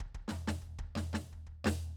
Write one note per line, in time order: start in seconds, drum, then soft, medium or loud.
0.01 kick soft
0.14 kick soft
0.28 snare medium
0.28 floor tom medium
0.47 snare medium
0.47 floor tom medium
0.62 kick soft
0.79 kick soft
0.95 snare medium
0.95 floor tom medium
1.13 snare medium
1.13 floor tom medium
1.33 kick soft
1.47 kick soft
1.64 snare medium
1.64 floor tom loud